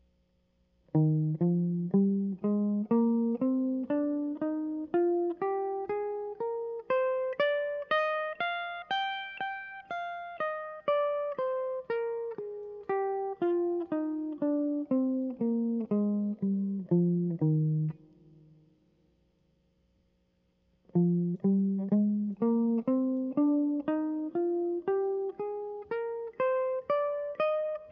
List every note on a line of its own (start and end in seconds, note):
0.96 1.38 D#3
1.42 1.91 F3
1.95 2.38 G3
2.45 2.87 G#3
2.92 3.39 A#3
3.42 3.87 C4
3.91 4.40 D4
4.42 4.89 D#4
4.94 5.34 F4
5.42 5.88 G4
5.90 6.36 G#4
6.41 6.83 A#4
6.91 7.36 C5
7.40 7.85 D5
7.91 8.36 D#5
8.41 8.85 F5
8.91 9.40 G5
9.41 9.84 G5
9.91 10.40 F5
10.41 10.82 D#5
10.88 11.35 D5
11.39 11.83 C5
11.90 12.36 A#4
12.39 12.86 G#4
12.90 13.37 G4
13.42 13.86 F4
13.92 14.40 D#4
14.42 14.86 D4
14.92 15.35 C4
15.41 15.88 A#3
15.92 16.36 G#3
16.43 16.82 G3
16.82 16.88 F#3
16.93 17.33 F3
17.32 17.39 E3
17.43 17.94 D#3
20.96 21.38 F3
21.45 21.92 G3
21.93 22.36 G#3
22.43 22.83 A#3
22.88 23.35 C4
23.38 23.84 D4
23.88 24.32 D#4
24.36 24.83 F4
24.88 25.34 G4
25.40 25.85 G#4
25.92 26.33 A#4
26.40 26.82 C5
26.90 27.37 D5
27.40 27.79 D#5